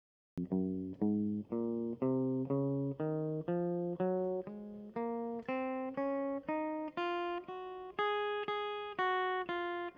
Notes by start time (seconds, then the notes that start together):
0.36 F2
0.54 F#2
1.05 G#2
1.54 A#2
2.04 C3
2.52 C#3
3.01 D#3
3.49 F3
4.01 F#3
4.49 G#3
4.97 A#3
5.50 C4
5.98 C#4
6.49 D#4
6.98 F4
7.99 G#4
8.49 G#4
9.00 F#4
9.50 F4